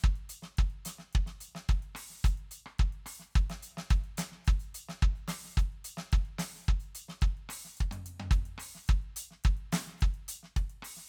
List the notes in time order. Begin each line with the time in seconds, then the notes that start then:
0.01 snare, closed hi-hat, hi-hat pedal
0.05 kick
0.10 snare
0.17 closed hi-hat
0.30 closed hi-hat
0.43 snare
0.58 kick, closed hi-hat
0.71 closed hi-hat
0.86 closed hi-hat, snare
0.99 snare
1.14 kick, closed hi-hat
1.27 snare, closed hi-hat
1.41 closed hi-hat
1.56 snare
1.70 kick, closed hi-hat
1.83 closed hi-hat
1.96 open hi-hat, cross-stick
2.11 snare
2.14 snare
2.22 closed hi-hat, kick, hi-hat pedal
2.38 closed hi-hat
2.47 kick
2.52 closed hi-hat
2.67 cross-stick
2.80 kick, closed hi-hat
2.93 closed hi-hat
3.07 open hi-hat, cross-stick
3.20 snare
3.31 hi-hat pedal
3.36 kick, closed hi-hat
3.51 snare, closed hi-hat
3.63 closed hi-hat
3.78 snare
3.91 kick, closed hi-hat
4.05 closed hi-hat
4.18 open hi-hat, snare
4.33 snare
4.45 kick, closed hi-hat, hi-hat pedal
4.51 snare
4.60 closed hi-hat
4.75 closed hi-hat
4.90 snare
5.03 kick, closed hi-hat
5.16 closed hi-hat
5.29 open hi-hat, snare
5.45 snare
5.54 hi-hat pedal
5.58 kick, snare, closed hi-hat
5.73 closed hi-hat
5.85 closed hi-hat
5.98 snare
6.13 kick, closed hi-hat
6.26 closed hi-hat
6.39 open hi-hat, snare
6.56 snare
6.64 hi-hat pedal
6.68 kick, snare, closed hi-hat
6.81 closed hi-hat
6.96 closed hi-hat
7.09 snare
7.22 kick, closed hi-hat
7.38 closed hi-hat
7.50 open hi-hat, cross-stick
7.66 snare
7.77 kick, hi-hat pedal, open hi-hat
7.92 closed hi-hat, high tom
8.07 closed hi-hat
8.21 high tom
8.32 kick, closed hi-hat
8.46 closed hi-hat
8.59 open hi-hat, cross-stick
8.76 snare
8.86 kick, closed hi-hat, hi-hat pedal
8.96 snare
9.03 closed hi-hat
9.17 closed hi-hat
9.32 snare
9.45 kick, closed hi-hat
9.58 closed hi-hat
9.73 open hi-hat, snare
9.88 snare
9.95 snare
9.99 snare, closed hi-hat, hi-hat pedal
10.03 kick, snare
10.15 closed hi-hat
10.29 closed hi-hat
10.44 snare
10.57 kick, closed hi-hat
10.70 closed hi-hat
10.83 open hi-hat, cross-stick
10.97 snare